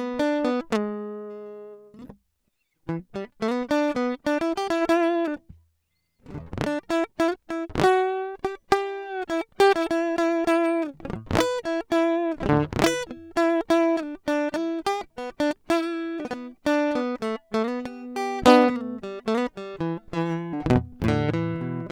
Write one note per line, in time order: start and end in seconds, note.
0.00 0.25 B3
0.20 0.58 D4
0.46 0.63 B3
0.73 1.76 G#3
2.90 3.05 E3
3.17 3.30 G3
3.43 3.69 B3
3.72 4.00 D4
3.97 4.19 B3
4.27 4.39 D4
4.42 4.57 E4
4.58 4.75 G4
4.71 4.88 E4
4.90 5.25 E4
5.26 5.42 D4
6.67 6.82 D4
6.91 7.09 E4
7.21 7.38 E4
7.51 7.71 E4
7.85 8.39 F#4
8.46 8.59 G4
8.73 9.27 G4
9.31 9.46 E4
9.61 9.72 G4
9.73 9.89 E4
9.92 10.18 E4
10.19 10.46 E4
10.49 10.83 E4
10.83 10.97 D4
11.17 11.26 A2
11.34 11.51 A#2
11.40 11.64 B4
11.66 11.84 E4
11.93 12.38 E4
12.51 12.63 A2
12.51 12.70 D3
12.77 12.86 A#2
12.83 12.98 E4
12.88 13.08 B4
13.08 13.34 E4
13.38 13.66 E4
13.71 13.98 E4
13.98 14.20 D4
14.29 14.52 D4
14.55 14.84 E4
14.87 15.07 G4
15.19 15.33 B3
15.19 15.34 B3
15.41 15.56 D4
15.71 16.27 E4
16.32 16.57 B3
16.67 17.09 D4
16.96 17.18 B3
17.23 17.42 A3
17.55 17.67 A3
17.69 17.84 B3
18.17 18.44 G4
18.46 18.71 B3
18.46 18.77 D4
18.46 18.64 G4
18.77 19.01 A3
19.04 19.22 G3
19.29 19.52 B3
19.58 19.81 G3
19.82 20.00 E3
20.14 20.54 E3
20.54 20.64 D3
20.67 20.84 B2
20.67 20.80 D#3
20.77 20.90 F2
21.03 21.14 E2
21.03 21.23 A2
21.09 21.33 D3
21.35 21.88 E3
21.63 21.85 B2